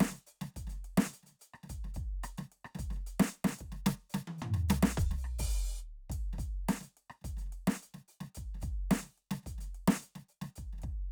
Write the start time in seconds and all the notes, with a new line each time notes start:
0.01 closed hi-hat, snare
0.12 open hi-hat, snare
0.27 closed hi-hat, hi-hat pedal
0.42 snare
0.54 closed hi-hat, kick, snare
0.62 kick
0.67 closed hi-hat, snare
0.73 snare
0.78 snare
0.85 closed hi-hat
0.98 snare
1.07 snare
1.14 closed hi-hat
1.23 closed hi-hat, snare
1.29 snare
1.40 closed hi-hat, hi-hat pedal
1.54 cross-stick
1.64 snare
1.70 closed hi-hat, kick
1.85 snare
1.91 snare
1.95 closed hi-hat, kick
2.03 kick
2.05 kick
2.24 closed hi-hat, cross-stick
2.38 snare, closed hi-hat
2.52 closed hi-hat
2.65 cross-stick
2.75 kick, snare
2.80 closed hi-hat
2.91 closed hi-hat, snare
2.97 snare
3.07 closed hi-hat
3.20 snare
3.34 closed hi-hat
3.45 snare
3.49 snare
3.57 closed hi-hat, hi-hat pedal
3.61 kick
3.67 kick
3.72 snare
3.86 snare, high tom
4.10 hi-hat pedal
4.15 snare
4.28 open hi-hat, high tom
4.39 hi-hat pedal, mid tom
4.54 snare
4.69 snare, hi-hat pedal
4.83 snare
4.98 kick, hi-hat pedal
5.12 snare
5.19 hi-hat pedal
5.25 cross-stick
5.39 open hi-hat, kick
6.10 kick, closed hi-hat
6.16 kick
6.33 snare
6.39 closed hi-hat, kick
6.47 kick
6.69 closed hi-hat, snare
6.81 closed hi-hat, snare
6.97 closed hi-hat
7.10 cross-stick
7.22 closed hi-hat, kick, snare
7.31 kick
7.37 closed hi-hat, snare
7.42 snare
7.47 snare
7.53 closed hi-hat
7.68 snare
7.83 closed hi-hat
7.95 snare
8.09 open hi-hat
8.21 snare
8.35 closed hi-hat, kick
8.55 snare
8.61 closed hi-hat, kick, snare, hi-hat pedal
8.73 kick
8.92 closed hi-hat, snare
9.03 open hi-hat, snare
9.18 closed hi-hat
9.31 snare
9.44 closed hi-hat, kick, snare
9.52 kick
9.59 closed hi-hat, snare
9.64 snare
9.75 closed hi-hat
9.88 snare
9.97 snare
10.03 closed hi-hat
10.16 snare
10.29 open hi-hat, hi-hat pedal
10.42 snare
10.56 closed hi-hat, kick
10.73 snare
10.79 snare, closed hi-hat
10.84 kick
10.90 kick
10.93 kick